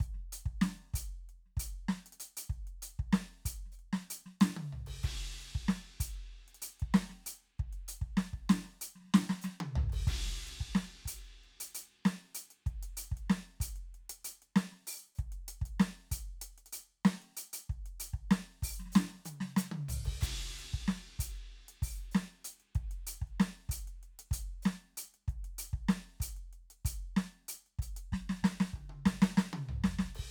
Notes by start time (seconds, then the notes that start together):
0.04 kick, closed hi-hat, hi-hat pedal
0.14 snare
0.33 closed hi-hat
0.46 kick
0.61 snare
0.94 closed hi-hat, kick
1.29 closed hi-hat
1.46 snare
1.57 closed hi-hat, kick
1.89 snare
2.06 closed hi-hat
2.13 closed hi-hat
2.20 closed hi-hat
2.37 closed hi-hat
2.50 kick, closed hi-hat
2.67 closed hi-hat
2.82 closed hi-hat
2.99 kick
3.13 snare
3.45 closed hi-hat, kick
3.66 snare
3.72 hi-hat pedal
3.79 closed hi-hat
3.93 snare
4.10 closed hi-hat
4.26 snare
4.41 snare, hi-hat pedal
4.57 high tom
4.73 floor tom
4.87 kick, crash
5.03 kick, ride
5.40 closed hi-hat
5.55 kick
5.68 snare
6.00 closed hi-hat, kick
6.48 closed hi-hat
6.55 closed hi-hat
6.62 closed hi-hat
6.80 kick, closed hi-hat
6.94 snare
7.09 snare
7.26 closed hi-hat
7.44 closed hi-hat
7.59 kick, closed hi-hat
7.73 closed hi-hat
7.88 closed hi-hat
8.01 kick
8.17 snare
8.33 kick
8.49 snare
8.64 snare
8.81 closed hi-hat
8.95 snare
9.00 snare
9.04 snare
9.08 snare
9.11 snare
9.14 snare
9.29 snare
9.42 snare, hi-hat pedal
9.60 high tom
9.76 floor tom
9.89 kick, crash
10.07 kick, ride
10.25 snare
10.47 closed hi-hat
10.60 kick
10.75 snare
11.05 closed hi-hat, kick
11.24 closed hi-hat
11.44 closed hi-hat
11.60 closed hi-hat
11.75 closed hi-hat
12.05 snare, crash
12.35 closed hi-hat
12.51 closed hi-hat
12.66 kick, closed hi-hat
12.83 closed hi-hat
12.97 closed hi-hat
13.12 kick
13.17 closed hi-hat
13.30 snare
13.60 closed hi-hat, kick
13.76 closed hi-hat
13.94 closed hi-hat
14.10 closed hi-hat
14.25 closed hi-hat
14.42 closed hi-hat
14.56 snare
14.71 snare
14.87 open hi-hat
15.15 kick, closed hi-hat, hi-hat pedal
15.32 closed hi-hat
15.48 closed hi-hat
15.61 kick
15.66 closed hi-hat
15.80 snare
16.11 closed hi-hat, kick
16.42 closed hi-hat
16.58 closed hi-hat
16.66 closed hi-hat
16.73 closed hi-hat
17.05 snare
17.22 closed hi-hat
17.37 closed hi-hat
17.53 closed hi-hat
17.69 kick, closed hi-hat
17.86 closed hi-hat
18.00 closed hi-hat
18.13 kick
18.31 snare
18.63 open hi-hat, kick
18.79 snare
18.86 snare
18.90 snare, hi-hat pedal
18.95 snare
19.08 snare
19.13 snare
19.25 hi-hat pedal, high tom
19.41 snare
19.57 snare, hi-hat pedal
19.72 high tom
19.89 floor tom, hi-hat pedal
20.05 kick, crash
20.21 kick, hi-hat pedal, ride
20.59 closed hi-hat
20.74 kick
20.88 snare
21.19 closed hi-hat, kick
21.36 closed hi-hat
21.55 closed hi-hat
21.68 closed hi-hat
21.82 open hi-hat, kick
22.11 snare, hi-hat pedal
22.45 closed hi-hat
22.60 closed hi-hat
22.75 kick, closed hi-hat
22.91 closed hi-hat
23.07 closed hi-hat
23.22 kick
23.27 closed hi-hat
23.40 snare
23.69 closed hi-hat, kick
23.88 closed hi-hat
24.03 closed hi-hat
24.19 closed hi-hat
24.31 closed hi-hat, kick
24.63 snare, hi-hat pedal
24.97 closed hi-hat
25.14 closed hi-hat
25.28 kick, closed hi-hat
25.44 closed hi-hat
25.58 closed hi-hat
25.73 kick
25.89 snare
26.20 closed hi-hat, kick
26.37 closed hi-hat
26.53 closed hi-hat
26.70 closed hi-hat
26.85 closed hi-hat, kick
27.17 snare
27.48 closed hi-hat
27.66 closed hi-hat
27.79 closed hi-hat, kick
27.97 closed hi-hat
28.12 kick, snare
28.29 snare
28.43 kick, snare
28.60 snare
28.73 kick, high tom
28.90 high tom
29.06 kick, snare
29.22 snare
29.37 snare
29.53 high tom
29.69 floor tom
29.84 snare
29.99 snare
30.15 crash
30.19 kick